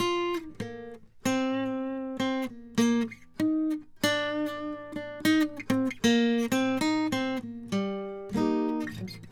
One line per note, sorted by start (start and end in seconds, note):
0.01 0.35 F4
0.36 0.53 E4
0.61 1.00 A#3
1.27 2.20 C4
2.21 2.45 C4
2.45 2.78 A#3
2.79 3.10 A#3
3.41 3.80 D#4
4.05 4.95 D4
4.98 5.23 D4
5.26 5.42 D#4
5.42 5.66 D4
5.71 5.94 C4
6.05 6.50 A#3
6.53 6.83 C4
6.82 7.13 D#4
7.13 7.38 C4
7.39 7.74 A#3
7.74 8.30 G3
8.31 8.39 G3
8.36 8.87 A#3
8.36 8.94 D#4
8.36 8.75 G4